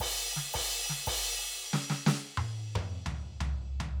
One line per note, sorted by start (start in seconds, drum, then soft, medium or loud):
0.05 kick medium
0.05 crash loud
0.36 snare medium
0.53 kick medium
0.53 crash loud
0.90 snare medium
1.07 kick medium
1.07 crash loud
1.73 snare loud
1.90 snare medium
2.06 snare loud
2.13 snare soft
2.37 high tom loud
2.75 mid tom loud
3.06 floor tom loud
3.41 floor tom loud
3.80 floor tom loud